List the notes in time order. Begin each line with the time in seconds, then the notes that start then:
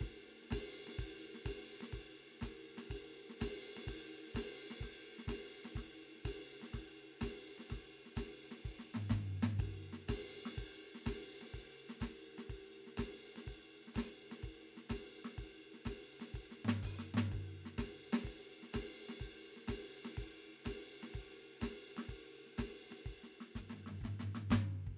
0.01 kick, snare, ride
0.42 snare
0.51 kick, snare, hi-hat pedal, ride
0.56 snare
0.87 snare, ride
0.99 kick, snare, ride
1.34 snare
1.46 kick, hi-hat pedal, ride
1.81 snare, ride
1.93 kick, ride
2.31 snare
2.41 kick, snare, hi-hat pedal, ride
2.78 snare, ride
2.90 kick, ride
3.30 snare
3.41 kick, snare, hi-hat pedal, ride
3.77 snare, ride
3.87 kick, snare, ride
4.27 snare
4.34 kick, snare, hi-hat pedal, ride
4.70 snare, ride
4.81 kick, snare, ride
5.19 snare
5.28 kick, snare, hi-hat pedal, ride
5.65 snare, ride
5.75 kick, snare, hi-hat pedal, ride
6.15 snare
6.25 kick, hi-hat pedal, ride
6.62 snare, ride
6.74 kick, snare, ride
7.12 snare
7.21 kick, snare, hi-hat pedal, ride
7.26 snare
7.58 snare, ride
7.70 kick, snare, ride
8.06 snare
8.16 kick, snare, hi-hat pedal, ride
8.51 snare, ride
8.63 kick, hi-hat pedal, ride
8.79 snare
8.94 snare, floor tom
9.10 kick, snare, floor tom, hi-hat pedal
9.43 snare, floor tom
9.59 kick, ride
9.93 snare
10.08 kick, snare, hi-hat pedal, ride
10.46 snare, ride
10.58 kick, ride
10.95 snare
11.06 kick, snare, hi-hat pedal, ride
11.42 snare, ride
11.54 kick, ride
11.89 snare
12.00 kick, snare, hi-hat pedal, ride
12.38 snare, ride
12.50 kick, ride
12.87 snare
12.97 kick, snare, hi-hat pedal, ride
13.36 snare, ride
13.47 kick, ride
13.87 snare
13.94 kick, snare, hi-hat pedal, ride
14.31 snare, ride
14.42 kick, hi-hat pedal, ride
14.77 snare
14.89 kick, snare, hi-hat pedal, ride
15.25 snare, ride
15.38 kick, ride
15.74 snare
15.85 kick, snare, hi-hat pedal, ride
16.20 snare, ride
16.34 kick, ride
16.51 snare
16.65 snare, floor tom
16.83 kick, hi-hat pedal, ride
16.99 snare
17.14 snare, floor tom
17.30 kick, hi-hat pedal, ride
17.66 snare
17.78 kick, snare, hi-hat pedal, ride
18.13 snare, ride
18.23 kick, hi-hat pedal, ride
18.63 snare
18.73 kick, snare, hi-hat pedal, ride
19.09 snare, ride
19.18 kick, hi-hat pedal, ride
19.56 snare
19.68 kick, snare, hi-hat pedal, ride
20.05 snare, ride
20.17 kick, ride
20.52 snare
20.65 kick, snare, hi-hat pedal, ride
21.03 snare, ride
21.14 kick, ride
21.50 snare
21.61 kick, snare, hi-hat pedal, ride
21.97 snare, ride
22.09 kick, hi-hat pedal, ride
22.46 snare
22.58 kick, snare, hi-hat pedal, ride
22.91 snare, ride
23.04 kick, hi-hat pedal, ride
23.23 snare
23.41 snare
23.55 kick, snare, floor tom, hi-hat pedal
23.70 snare, floor tom
23.86 snare, floor tom
24.01 kick, snare, floor tom, hi-hat pedal
24.20 snare, floor tom
24.35 snare, floor tom
24.50 kick, snare, floor tom, hi-hat pedal
24.87 kick